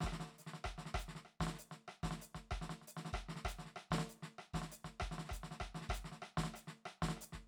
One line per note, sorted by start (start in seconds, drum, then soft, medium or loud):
0.01 kick soft
0.01 snare medium
0.07 cross-stick medium
0.13 snare soft
0.20 snare soft
0.26 snare soft
0.32 snare soft
0.39 snare soft
0.39 hi-hat pedal soft
0.47 snare soft
0.54 snare soft
0.65 kick soft
0.65 cross-stick medium
0.78 snare soft
0.86 snare soft
0.95 kick soft
0.95 cross-stick medium
0.99 hi-hat pedal soft
1.08 snare soft
1.15 snare soft
1.25 cross-stick soft
1.40 kick soft
1.40 snare medium
1.47 snare medium
1.54 snare soft
1.59 hi-hat pedal medium
1.72 snare soft
1.88 cross-stick soft
2.04 kick soft
2.04 snare medium
2.11 snare soft
2.18 snare soft
2.18 hi-hat pedal medium
2.35 kick soft
2.35 snare soft
2.51 kick soft
2.51 cross-stick medium
2.62 snare soft
2.70 snare soft
2.82 snare soft
2.88 snare soft
2.88 hi-hat pedal medium
2.97 snare soft
3.05 snare soft
3.13 kick soft
3.13 cross-stick medium
3.29 snare soft
3.36 snare soft
3.45 kick soft
3.45 cross-stick medium
3.45 hi-hat pedal medium
3.59 snare soft
3.66 snare soft
3.76 cross-stick medium
3.91 kick soft
3.91 snare medium
3.99 snare medium
4.07 snare soft
4.07 hi-hat pedal soft
4.23 snare soft
4.39 cross-stick soft
4.54 kick soft
4.54 snare medium
4.62 snare soft
4.68 snare soft
4.68 hi-hat pedal medium
4.85 kick soft
4.85 snare soft
5.00 kick soft
5.00 cross-stick medium
5.12 snare soft
5.19 snare soft
5.25 snare soft
5.30 kick soft
5.30 cross-stick medium
5.30 hi-hat pedal medium
5.44 snare soft
5.51 snare soft
5.61 kick soft
5.61 cross-stick medium
5.75 snare soft
5.82 snare soft
5.90 kick soft
5.90 cross-stick medium
5.94 hi-hat pedal medium
6.05 snare soft
6.12 snare soft
6.22 cross-stick medium
6.38 kick soft
6.38 snare medium
6.44 snare medium
6.54 cross-stick soft
6.54 hi-hat pedal soft
6.68 snare soft
6.86 cross-stick medium
7.02 kick soft
7.02 snare medium
7.09 snare medium
7.17 cross-stick soft
7.21 hi-hat pedal medium
7.33 kick soft
7.33 snare soft